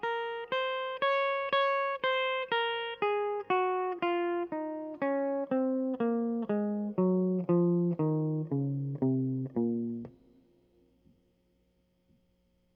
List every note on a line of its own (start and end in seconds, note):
0.04 0.48 A#4
0.53 1.00 C5
1.03 1.53 C#5
1.53 2.01 C#5
2.04 2.47 C5
2.52 2.98 A#4
3.03 3.44 G#4
3.51 4.02 F#4
4.03 4.49 F4
4.53 4.98 D#4
5.03 5.47 C#4
5.52 5.98 C4
6.01 6.47 A#3
6.51 6.94 G#3
6.99 7.48 F#3
7.51 7.96 F3
8.01 8.46 D#3
8.53 9.00 C#3
9.04 9.49 C3
9.59 10.09 A#2